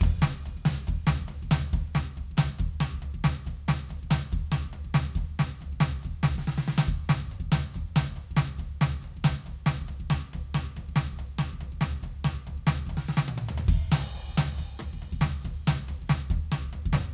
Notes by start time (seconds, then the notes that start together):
0.01 kick, snare, floor tom
0.22 snare, floor tom
0.46 kick, floor tom
0.65 snare, floor tom
0.84 kick, snare, floor tom
1.07 snare, floor tom
1.21 kick
1.28 floor tom
1.42 kick
1.51 snare, floor tom
1.72 kick, snare, floor tom
1.95 snare, floor tom
2.17 kick, floor tom
2.31 kick
2.37 snare, floor tom
2.59 kick, floor tom
2.80 snare, floor tom
2.94 kick
3.02 floor tom
3.14 kick
3.24 snare, floor tom
3.46 kick, snare, floor tom
3.68 snare, floor tom
3.89 kick, floor tom
4.03 kick
4.10 snare, floor tom
4.32 kick, floor tom
4.52 snare, floor tom
4.65 kick
4.73 floor tom
4.84 kick
4.94 snare, floor tom
5.15 kick, snare, floor tom
5.39 snare, floor tom
5.61 kick, floor tom
5.72 kick
5.80 snare, floor tom
5.99 snare
6.03 kick, floor tom
6.23 snare, floor tom
6.35 kick, snare
6.47 snare
6.58 snare
6.78 snare
6.88 kick
7.09 snare, floor tom
7.17 snare
7.27 kick
7.31 floor tom
7.40 kick
7.52 snare, floor tom
7.71 snare, floor tom
7.76 kick
7.96 snare, floor tom
8.08 kick, snare
8.16 floor tom
8.31 kick
8.37 snare, floor tom
8.58 kick, floor tom
8.81 snare, floor tom
9.02 kick, floor tom
9.17 kick
9.24 snare, floor tom
9.44 kick, snare, floor tom
9.66 snare, floor tom
9.81 kick
9.86 snare, floor tom
10.00 kick
10.10 snare, floor tom
10.33 kick, floor tom
10.54 snare, floor tom
10.76 kick, floor tom
10.88 kick
10.96 snare, floor tom
11.13 kick
11.19 floor tom
11.38 snare, floor tom
11.53 kick
11.61 floor tom
11.72 kick
11.81 snare, floor tom
12.03 kick, floor tom
12.24 snare, floor tom
12.47 kick, floor tom
12.57 kick
12.67 snare, floor tom
12.87 kick, floor tom
12.97 snare
13.08 snare
13.17 snare
13.28 high tom
13.38 high tom
13.49 floor tom
13.57 floor tom
13.68 kick, ride
13.92 snare, crash
14.15 kick
14.28 kick
14.37 snare, floor tom
14.58 kick, floor tom
14.79 cross-stick, floor tom
14.93 kick, snare
15.02 floor tom
15.12 kick
15.21 snare, floor tom
15.42 kick, snare, floor tom
15.67 snare, floor tom
15.86 kick, snare, floor tom
16.02 kick
16.09 snare, floor tom
16.30 kick, floor tom
16.52 snare, floor tom
16.65 kick, snare
16.73 floor tom
16.86 kick
16.93 snare, floor tom